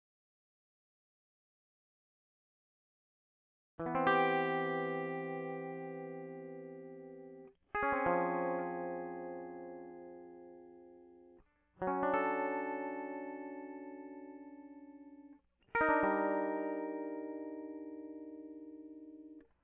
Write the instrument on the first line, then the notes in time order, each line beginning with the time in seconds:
electric guitar
3.81 E3
3.87 B3
3.96 C4
4.07 G4
7.75 G#4
7.83 C#4
7.93 C4
8.07 F3
11.83 F#3
11.88 C#4
12.04 D4
12.14 A4
15.76 A#4
15.81 D#4 F4
15.89 D4
16.04 G3